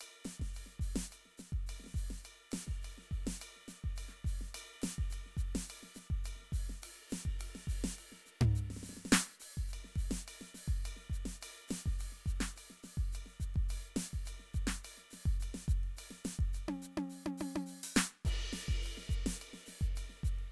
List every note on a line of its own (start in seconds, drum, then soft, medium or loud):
0.00 hi-hat pedal medium
0.00 ride bell medium
0.24 snare soft
0.24 hi-hat pedal medium
0.24 ride medium
0.40 kick soft
0.40 snare soft
0.53 hi-hat pedal medium
0.53 ride bell soft
0.66 snare soft
0.79 kick soft
0.79 hi-hat pedal medium
0.79 ride soft
0.95 snare medium
0.95 ride soft
1.10 hi-hat pedal medium
1.10 ride bell medium
1.25 snare soft
1.37 snare soft
1.37 hi-hat pedal medium
1.37 ride soft
1.52 kick soft
1.52 ride soft
1.66 hi-hat pedal medium
1.66 ride bell medium
1.80 snare soft
1.84 snare soft
1.86 snare soft
1.94 kick soft
1.94 hi-hat pedal medium
1.94 ride soft
2.08 snare soft
2.08 ride soft
2.23 hi-hat pedal medium
2.23 ride bell medium
2.51 snare medium
2.51 hi-hat pedal medium
2.51 ride loud
2.67 kick soft
2.67 snare soft
2.81 hi-hat pedal soft
2.81 ride bell medium
2.98 snare soft
3.11 kick soft
3.11 hi-hat pedal soft
3.11 ride soft
3.26 snare medium
3.26 ride soft
3.39 hi-hat pedal medium
3.39 ride bell medium
3.56 snare soft
3.68 snare soft
3.68 hi-hat pedal medium
3.68 ride soft
3.81 kick soft
3.81 ride soft
3.96 hi-hat pedal medium
3.96 ride bell medium
4.08 snare soft
4.24 kick soft
4.24 hi-hat pedal medium
4.24 ride soft
4.39 snare soft
4.39 ride soft
4.54 hi-hat pedal medium
4.54 ride bell medium
4.82 snare medium
4.82 hi-hat pedal medium
4.82 ride medium
4.98 kick soft
4.98 snare soft
5.10 hi-hat pedal medium
5.10 ride bell medium
5.26 snare soft
5.37 kick soft
5.37 hi-hat pedal medium
5.37 ride soft
5.53 snare medium
5.53 ride soft
5.66 hi-hat pedal medium
5.66 ride bell medium
5.83 snare soft
5.94 snare soft
5.94 hi-hat pedal medium
5.94 ride soft
6.10 kick soft
6.10 ride soft
6.24 hi-hat pedal medium
6.24 ride bell medium
6.36 snare soft
6.39 snare soft
6.42 snare soft
6.52 kick soft
6.52 hi-hat pedal medium
6.52 ride soft
6.67 snare soft
6.67 ride soft
6.82 hi-hat pedal medium
6.82 ride loud
7.09 snare medium
7.09 hi-hat pedal medium
7.09 ride soft
7.25 kick soft
7.25 snare soft
7.39 hi-hat pedal medium
7.39 ride loud
7.55 snare soft
7.67 kick soft
7.67 hi-hat pedal medium
7.67 ride soft
7.84 snare medium
7.97 hi-hat pedal medium
7.97 ride medium
8.12 snare soft
8.25 snare soft
8.25 hi-hat pedal medium
8.41 floor tom loud
8.55 hi-hat pedal medium
8.70 snare soft
8.76 snare soft
8.83 snare soft
8.83 hi-hat pedal medium
8.89 snare soft
8.93 snare soft
8.97 snare soft
9.05 snare soft
9.12 snare loud
9.12 hi-hat pedal medium
9.40 hi-hat pedal medium
9.40 ride medium
9.57 kick soft
9.68 hi-hat pedal medium
9.73 ride bell medium
9.84 snare soft
9.95 kick soft
9.95 hi-hat pedal medium
9.95 ride medium
10.10 snare medium
10.10 ride soft
10.27 hi-hat pedal medium
10.27 ride bell medium
10.41 snare soft
10.54 snare soft
10.54 hi-hat pedal medium
10.54 ride soft
10.68 kick soft
10.68 ride soft
10.84 hi-hat pedal medium
10.84 ride bell medium
10.96 snare soft
11.10 kick soft
11.10 hi-hat pedal medium
11.10 ride soft
11.25 snare soft
11.25 ride soft
11.41 hi-hat pedal medium
11.41 ride bell medium
11.67 snare medium
11.67 hi-hat pedal medium
11.67 ride medium
11.86 kick soft
11.86 snare soft
11.98 hi-hat pedal medium
11.98 ride medium
12.12 snare soft
12.26 kick soft
12.26 hi-hat pedal medium
12.26 ride soft
12.40 snare medium
12.40 ride soft
12.56 hi-hat pedal medium
12.56 ride bell medium
12.70 snare soft
12.83 snare soft
12.83 hi-hat pedal medium
12.83 ride soft
12.97 kick soft
12.97 ride soft
13.12 hi-hat pedal medium
13.12 ride bell medium
13.26 snare soft
13.40 kick soft
13.40 hi-hat pedal medium
13.40 ride soft
13.54 kick medium
13.54 ride soft
13.69 hi-hat pedal medium
13.69 ride bell medium
13.96 snare medium
13.96 hi-hat pedal medium
13.96 ride medium
14.10 kick soft
14.10 ride soft
14.25 hi-hat pedal medium
14.25 ride bell medium
14.39 snare soft
14.53 kick soft
14.53 hi-hat pedal medium
14.53 ride soft
14.67 snare medium
14.67 ride soft
14.84 hi-hat pedal medium
14.84 ride bell medium
14.97 snare soft
15.10 snare soft
15.10 hi-hat pedal medium
15.10 ride soft
15.25 kick medium
15.25 ride soft
15.40 hi-hat pedal medium
15.40 ride bell medium
15.54 snare soft
15.68 kick medium
15.68 hi-hat pedal medium
15.68 ride soft
15.83 ride soft
15.97 hi-hat pedal medium
15.97 ride bell medium
16.10 snare soft
16.24 snare medium
16.24 hi-hat pedal medium
16.24 ride soft
16.39 kick medium
16.39 ride soft
16.53 hi-hat pedal medium
16.53 ride bell soft
16.68 open hi-hat soft
16.68 high tom loud
16.82 hi-hat pedal medium
16.97 open hi-hat soft
16.97 high tom loud
17.10 hi-hat pedal medium
17.26 high tom medium
17.37 hi-hat pedal medium
17.37 high tom medium
17.55 high tom loud
17.66 hi-hat pedal medium
17.83 open hi-hat medium
17.96 snare loud
17.96 hi-hat pedal medium
18.25 kick soft
18.25 hi-hat pedal medium
18.25 ride medium
18.53 snare soft
18.53 hi-hat pedal medium
18.68 kick soft
18.68 snare soft
18.82 hi-hat pedal medium
18.86 ride bell medium
18.97 snare soft
19.09 kick soft
19.09 hi-hat pedal medium
19.14 ride soft
19.26 snare medium
19.26 ride soft
19.39 hi-hat pedal medium
19.39 ride bell medium
19.53 snare soft
19.66 snare soft
19.66 hi-hat pedal medium
19.66 ride soft
19.81 kick soft
19.81 ride soft
19.95 hi-hat pedal medium
19.95 ride bell medium
20.09 snare soft
20.23 kick soft
20.23 hi-hat pedal medium
20.23 ride soft
20.39 ride soft